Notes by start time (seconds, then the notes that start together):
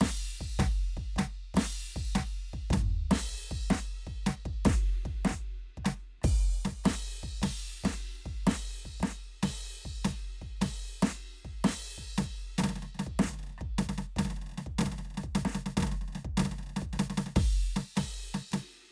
0.00 kick, snare, crash
0.41 kick
0.59 kick, snare, percussion
0.97 kick
1.16 kick, snare, percussion
1.55 kick, snare, crash
1.96 kick
2.15 kick, snare, percussion
2.54 kick
2.71 kick, snare, mid tom
3.11 kick, snare, crash
3.51 kick
3.71 kick, snare, percussion
4.07 kick
4.27 kick, snare, percussion
4.46 kick
4.65 kick, snare, ride
5.06 kick
5.25 snare, percussion
5.31 kick
5.78 kick
5.85 snare, percussion
5.98 kick
6.19 kick, cross-stick
6.24 open hi-hat, kick, cross-stick
6.65 kick, snare
6.84 kick, snare, crash
7.23 kick
7.42 kick, snare, crash
7.84 kick, snare, ride bell
8.26 kick
8.47 kick, snare, crash
8.85 kick
9.00 kick, snare, ride bell
9.43 kick, snare, crash
9.85 kick
10.05 kick, snare, ride bell
10.42 kick
10.62 kick, snare, crash
11.03 kick, snare, ride bell
11.45 kick
11.65 snare, crash
11.69 kick
11.98 kick
12.18 kick, snare, ride bell
12.58 kick, snare
12.64 snare
12.69 snare
12.76 snare
12.83 snare
12.95 snare
13.00 snare
13.07 kick
13.19 kick, snare
13.24 snare
13.29 snare
13.34 snare
13.39 snare
13.43 snare
13.47 snare
13.50 snare
13.53 snare
13.58 kick, cross-stick
13.79 kick, snare
13.89 snare
13.98 snare
14.17 kick, cross-stick, snare
14.25 snare
14.30 snare
14.37 snare
14.42 snare
14.50 snare
14.52 snare
14.54 snare
14.58 snare
14.67 kick
14.79 snare
14.81 kick, snare
14.86 snare
14.92 snare
14.99 snare
15.05 snare
15.11 snare
15.15 snare
15.18 snare
15.24 kick
15.35 kick, snare
15.45 snare
15.55 snare
15.66 snare
15.77 kick, snare
15.81 snare
15.83 snare
15.87 snare
15.92 snare
16.01 snare
16.08 snare
16.13 snare
16.15 snare
16.25 kick
16.38 snare
16.40 kick, snare
16.45 snare
16.52 snare
16.59 snare
16.63 snare
16.67 snare
16.70 snare
16.77 snare
16.82 kick
16.93 kick, snare
17.00 snare
17.10 snare
17.18 snare
17.26 snare
17.36 kick, snare, crash
17.76 snare
17.96 kick, snare, crash
18.35 snare
18.52 kick, snare, ride